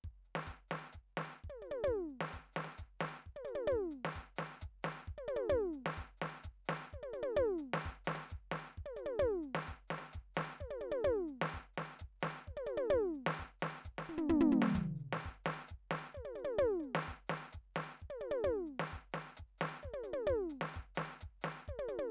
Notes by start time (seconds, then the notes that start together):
0.04 kick
0.24 hi-hat pedal
0.35 snare
0.46 closed hi-hat, kick
0.68 snare, hi-hat pedal
0.93 closed hi-hat, kick
1.17 snare, hi-hat pedal
1.44 kick
1.49 high tom
1.62 hi-hat pedal, high tom
1.71 high tom
1.83 high tom
1.87 kick
2.08 hi-hat pedal
2.21 snare
2.30 closed hi-hat, kick, snare
2.53 snare, hi-hat pedal
2.64 snare
2.78 closed hi-hat, kick
2.99 snare, hi-hat pedal
3.26 kick
3.36 high tom
3.44 hi-hat pedal, high tom
3.55 high tom
3.67 high tom
3.72 kick
3.91 hi-hat pedal
4.05 snare
4.15 closed hi-hat, kick
4.36 snare, hi-hat pedal
4.61 closed hi-hat, kick
4.83 snare, hi-hat pedal
5.07 kick
5.17 high tom
5.27 hi-hat pedal, high tom
5.36 high tom
5.49 kick, high tom
5.73 hi-hat pedal, high tom
5.86 snare
5.96 closed hi-hat, kick
6.17 hi-hat pedal
6.22 snare
6.33 snare
6.44 closed hi-hat, kick
6.65 snare, hi-hat pedal
6.93 kick, high tom
7.02 high tom
7.13 hi-hat pedal, high tom
7.22 high tom
7.36 kick, high tom
7.58 hi-hat pedal
7.73 snare
7.85 kick, closed hi-hat
8.04 snare, hi-hat pedal
8.15 snare
8.30 closed hi-hat, kick
8.51 snare, hi-hat pedal
8.77 kick
8.85 high tom
8.96 hi-hat pedal, high tom
9.05 high tom
9.19 kick, high tom
9.42 hi-hat pedal
9.55 snare
9.67 closed hi-hat, kick
9.87 snare, hi-hat pedal
9.98 snare
10.13 closed hi-hat, kick
10.34 snare, hi-hat pedal
10.60 kick, high tom
10.80 hi-hat pedal, high tom
10.91 high tom
11.04 kick, high tom
11.27 hi-hat pedal
11.41 snare
11.53 closed hi-hat, kick
11.73 hi-hat pedal
11.78 snare
11.99 closed hi-hat, kick
12.20 snare, hi-hat pedal
12.46 kick, high tom
12.56 high tom
12.66 hi-hat pedal, high tom
12.77 high tom
12.90 kick, high tom
13.13 hi-hat pedal
13.26 snare
13.37 kick, closed hi-hat
13.59 snare, hi-hat pedal
13.85 closed hi-hat, kick
13.98 snare
14.05 floor tom, hi-hat pedal
14.17 floor tom
14.29 kick, floor tom
14.40 floor tom
14.50 floor tom, hi-hat pedal
14.62 snare
14.75 closed hi-hat, kick
14.95 hi-hat pedal, open hi-hat
15.13 snare
15.23 closed hi-hat, kick
15.44 snare, hi-hat pedal
15.68 closed hi-hat, kick
15.90 snare, hi-hat pedal
16.14 kick, high tom
16.24 high tom
16.35 hi-hat pedal, high tom
16.44 high tom
16.58 kick, high tom
16.79 hi-hat pedal, high tom
16.95 snare
17.06 kick, closed hi-hat
17.27 snare, hi-hat pedal
17.41 snare
17.53 closed hi-hat, kick
17.74 snare, hi-hat pedal
17.85 snare
18.00 kick, closed hi-hat
18.10 high tom
18.19 hi-hat pedal, high tom
18.31 high tom
18.44 kick, high tom
18.66 hi-hat pedal
18.79 snare
18.90 closed hi-hat, kick
19.12 snare, hi-hat pedal
19.37 closed hi-hat, kick
19.58 snare, hi-hat pedal
19.82 kick, high tom
19.93 high tom
20.03 hi-hat pedal, high tom
20.13 high tom
20.26 kick, high tom
20.49 hi-hat pedal
20.61 snare
20.74 closed hi-hat, kick
20.95 snare, hi-hat pedal
21.09 snare
21.21 closed hi-hat, kick
21.41 snare, hi-hat pedal
21.68 kick, high tom
21.78 high tom
21.88 hi-hat pedal, high tom
21.98 high tom